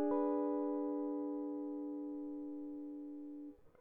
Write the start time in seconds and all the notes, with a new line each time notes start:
0.00 G#4
0.12 B4